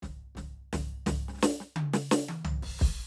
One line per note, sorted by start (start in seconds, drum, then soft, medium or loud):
0.02 kick soft
0.02 snare soft
0.02 floor tom medium
0.35 kick soft
0.35 snare medium
0.35 floor tom medium
0.73 kick soft
0.73 snare loud
0.73 floor tom medium
1.06 kick soft
1.06 snare loud
1.06 floor tom loud
1.28 snare soft
1.33 snare soft
1.37 snare soft
1.37 hi-hat pedal medium
1.43 snare loud
1.60 snare soft
1.76 mid tom loud
1.93 snare loud
2.08 snare loud
2.08 hi-hat pedal soft
2.28 high tom medium
2.45 floor tom loud
2.62 kick medium
2.62 crash medium
2.78 kick loud
2.78 crash medium